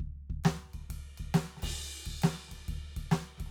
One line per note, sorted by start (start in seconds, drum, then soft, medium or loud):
0.00 kick medium
0.30 kick medium
0.44 snare soft
0.44 snare loud
0.44 ride soft
0.44 floor tom soft
0.74 kick soft
0.74 ride bell soft
0.81 snare soft
0.89 kick medium
0.89 snare soft
0.89 ride medium
0.92 snare soft
0.95 snare soft
1.18 kick medium
1.18 ride bell medium
1.34 snare loud
1.34 ride medium
1.57 snare soft
1.62 kick medium
1.62 snare soft
1.62 crash loud
1.68 snare soft
1.73 snare soft
1.78 snare soft
1.85 snare soft
1.97 snare soft
2.06 kick medium
2.06 ride medium
2.22 snare loud
2.22 ride medium
2.49 kick soft
2.49 snare soft
2.49 ride medium
2.58 snare soft
2.61 snare soft
2.65 snare soft
2.67 kick medium
2.67 snare soft
2.67 ride medium
2.70 snare soft
2.97 kick medium
2.97 ride medium
3.12 snare loud
3.12 ride soft
3.37 kick medium
3.37 snare soft
3.37 ride medium
3.47 snare soft